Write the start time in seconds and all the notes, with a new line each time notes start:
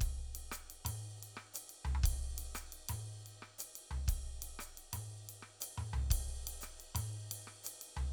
0.01 kick, ride
0.35 ride
0.52 cross-stick, hi-hat pedal
0.70 ride
0.85 mid tom, ride
1.23 ride
1.37 cross-stick
1.54 hi-hat pedal, ride
1.70 ride
1.85 floor tom
1.95 floor tom
2.04 kick, ride
2.38 ride
2.55 cross-stick, hi-hat pedal
2.73 ride
2.89 mid tom, ride
3.26 ride
3.42 cross-stick
3.59 hi-hat pedal, ride
3.76 ride
3.91 floor tom
4.08 kick, ride
4.42 ride
4.59 cross-stick, hi-hat pedal
4.78 ride
4.93 mid tom, ride
5.29 ride
5.43 cross-stick
5.61 hi-hat pedal, ride
5.78 mid tom
5.93 floor tom
6.11 kick, ride
6.47 ride
6.61 cross-stick, hi-hat pedal
6.80 ride
6.95 mid tom, ride
7.31 ride
7.47 cross-stick
7.64 hi-hat pedal, ride
7.82 ride
7.97 floor tom